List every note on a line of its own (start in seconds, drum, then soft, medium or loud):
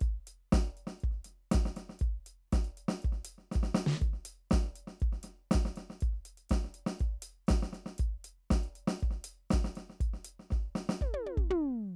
0.01 kick medium
0.01 closed hi-hat soft
0.27 closed hi-hat medium
0.53 kick medium
0.53 snare medium
0.53 closed hi-hat medium
0.77 closed hi-hat soft
0.87 snare soft
1.01 kick soft
1.01 closed hi-hat soft
1.11 snare soft
1.25 snare soft
1.25 closed hi-hat medium
1.52 closed hi-hat medium
1.52 kick medium
1.52 snare medium
1.66 snare soft
1.77 snare soft
1.77 closed hi-hat soft
1.90 snare soft
1.99 kick medium
1.99 closed hi-hat soft
2.27 closed hi-hat medium
2.53 kick medium
2.53 snare medium
2.53 closed hi-hat medium
2.65 closed hi-hat soft
2.78 closed hi-hat soft
2.89 snare medium
3.02 kick soft
3.02 closed hi-hat soft
3.13 snare soft
3.25 open hi-hat medium
3.38 snare soft
3.52 kick medium
3.52 snare soft
3.52 hi-hat pedal medium
3.63 snare soft
3.75 snare medium
3.87 snare medium
4.02 kick medium
4.02 closed hi-hat soft
4.14 snare soft
4.26 open hi-hat medium
4.51 kick medium
4.51 snare medium
4.51 closed hi-hat soft
4.51 hi-hat pedal soft
4.64 snare soft
4.76 closed hi-hat medium
4.88 snare soft
5.01 kick medium
5.01 closed hi-hat soft
5.13 snare soft
5.23 snare soft
5.23 closed hi-hat medium
5.52 kick medium
5.52 snare medium
5.52 closed hi-hat medium
5.66 snare soft
5.76 snare soft
5.76 closed hi-hat soft
5.90 snare soft
6.01 closed hi-hat soft
6.01 kick medium
6.13 snare soft
6.26 closed hi-hat medium
6.38 closed hi-hat soft
6.50 kick soft
6.50 snare medium
6.50 closed hi-hat medium
6.65 snare soft
6.74 closed hi-hat medium
6.87 snare medium
7.00 closed hi-hat soft
7.00 kick soft
7.22 open hi-hat loud
7.47 kick medium
7.47 snare medium
7.47 closed hi-hat medium
7.47 hi-hat pedal soft
7.63 snare soft
7.73 snare soft
7.73 closed hi-hat soft
7.86 snare soft
7.99 closed hi-hat medium
7.99 kick soft
8.25 closed hi-hat medium
8.51 kick medium
8.51 snare medium
8.51 closed hi-hat medium
8.64 closed hi-hat soft
8.76 closed hi-hat soft
8.88 snare medium
9.01 kick soft
9.01 closed hi-hat soft
9.11 snare soft
9.25 open hi-hat loud
9.50 kick medium
9.50 snare medium
9.50 closed hi-hat medium
9.50 hi-hat pedal soft
9.65 snare soft
9.76 snare soft
9.76 closed hi-hat soft
9.90 snare soft
10.01 kick soft
10.01 closed hi-hat soft
10.14 snare soft
10.25 closed hi-hat medium
10.40 snare soft
10.51 kick soft
10.51 snare soft
10.76 snare medium
10.90 snare medium
11.02 kick soft
11.02 high tom medium
11.14 high tom medium
11.27 high tom medium
11.38 kick medium
11.50 floor tom loud